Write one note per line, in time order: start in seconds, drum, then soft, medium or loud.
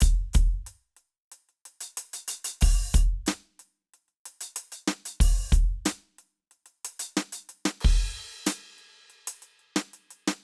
0.00 closed hi-hat loud
0.00 kick loud
0.33 kick loud
0.33 closed hi-hat loud
0.33 hi-hat pedal loud
0.66 closed hi-hat medium
0.96 closed hi-hat soft
1.32 closed hi-hat medium
1.49 closed hi-hat soft
1.65 closed hi-hat medium
1.81 closed hi-hat medium
1.97 closed hi-hat loud
2.13 closed hi-hat loud
2.28 closed hi-hat loud
2.44 closed hi-hat loud
2.61 open hi-hat loud
2.61 kick loud
2.93 kick loud
2.93 hi-hat pedal loud
2.93 open hi-hat loud
3.26 closed hi-hat medium
3.26 snare loud
3.59 closed hi-hat medium
3.94 closed hi-hat soft
4.08 closed hi-hat soft
4.26 closed hi-hat medium
4.41 closed hi-hat loud
4.56 closed hi-hat loud
4.72 closed hi-hat medium
4.88 snare loud
5.05 closed hi-hat medium
5.20 kick loud
5.20 open hi-hat loud
5.52 kick loud
5.52 closed hi-hat medium
5.52 hi-hat pedal loud
5.85 closed hi-hat loud
5.85 snare loud
6.18 closed hi-hat soft
6.51 closed hi-hat soft
6.66 closed hi-hat soft
6.85 closed hi-hat loud
6.99 closed hi-hat loud
7.17 snare loud
7.32 closed hi-hat medium
7.49 closed hi-hat medium
7.65 snare loud
7.81 kick loud
7.81 crash medium
8.46 closed hi-hat loud
8.46 snare loud
8.78 closed hi-hat soft
9.10 closed hi-hat soft
9.27 closed hi-hat loud
9.42 closed hi-hat medium
9.59 closed hi-hat soft
9.76 snare loud
9.93 closed hi-hat medium
10.11 closed hi-hat medium
10.28 snare loud